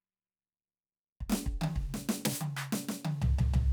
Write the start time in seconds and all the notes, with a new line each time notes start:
1.20 kick
1.30 snare
1.32 snare
1.46 kick
1.61 high tom
1.63 high tom
1.76 kick
1.80 snare
1.94 snare
2.09 snare
2.25 snare
2.41 high tom
2.56 percussion
2.72 snare
2.89 snare
3.05 high tom
3.22 floor tom
3.38 floor tom
3.53 floor tom